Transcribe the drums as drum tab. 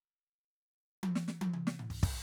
Crash     |---------------x|x---------------|
Snare     |---------oo--o--|----------------|
High tom  |--------o--o----|----------------|
Mid tom   |------------o---|----------------|
Floor tom |--------------o-|----------------|
Kick      |---------------o|o---------------|